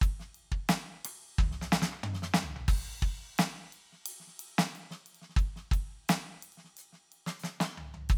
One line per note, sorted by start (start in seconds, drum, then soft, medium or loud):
0.02 kick loud
0.02 ride medium
0.20 snare soft
0.20 hi-hat pedal soft
0.35 ride soft
0.52 kick medium
0.69 snare loud
0.69 ride medium
1.05 cross-stick medium
1.05 ride loud
1.39 kick loud
1.39 mid tom loud
1.52 snare soft
1.62 snare medium
1.72 snare loud
1.82 snare loud
1.93 cross-stick medium
2.04 high tom loud
2.14 snare medium
2.23 snare medium
2.34 snare loud
2.43 mid tom medium
2.56 floor tom medium
2.68 kick loud
2.68 crash medium
3.03 kick loud
3.39 snare loud
3.39 ride medium
3.73 ride soft
3.93 snare soft
4.06 hi-hat pedal medium
4.06 ride loud
4.20 snare soft
4.28 snare soft
4.33 snare soft
4.40 ride medium
4.49 ride soft
4.59 snare loud
4.66 hi-hat pedal soft
4.76 ride soft
4.91 snare medium
5.06 ride soft
5.15 ride soft
5.22 snare soft
5.30 snare soft
5.37 kick loud
5.37 ride soft
5.56 snare soft
5.72 kick loud
5.72 ride medium
6.09 snare loud
6.09 hi-hat pedal medium
6.09 ride medium
6.43 ride medium
6.53 ride soft
6.58 snare soft
6.65 snare soft
6.77 hi-hat pedal medium
6.77 ride medium
6.93 snare soft
7.12 ride soft
7.27 snare medium
7.40 hi-hat pedal medium
7.44 snare medium
7.61 snare loud
7.78 mid tom medium
7.94 mid tom medium
8.10 kick loud
8.10 ride medium